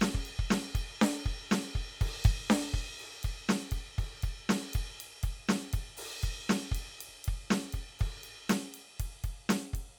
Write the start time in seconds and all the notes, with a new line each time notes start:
0.01 snare, ride
0.15 kick
0.25 ride
0.39 kick
0.51 snare, ride
0.75 kick, ride
1.02 snare, ride
1.25 kick, ride
1.51 snare, ride
1.74 kick, ride
2.01 kick, ride
2.24 kick, ride
2.50 snare, ride
2.74 kick, ride
2.99 ride
3.23 kick, ride
3.49 snare, ride
3.71 kick, ride
3.98 kick, ride
4.23 kick, ride
4.49 snare, hi-hat pedal, ride
4.74 kick, ride
5.00 ride
5.23 kick, ride
5.48 snare, hi-hat pedal, ride
5.73 kick, ride
5.97 open hi-hat, ride
6.20 kick, hi-hat pedal, ride
6.49 snare, ride
6.72 kick, hi-hat pedal, ride
7.01 ride
7.09 kick
7.24 kick, ride
7.51 snare, ride
7.73 kick, ride
7.99 kick, ride
8.24 ride
8.50 snare, ride
8.74 ride
9.00 kick, ride
9.24 kick, ride
9.49 snare, ride
9.74 kick, ride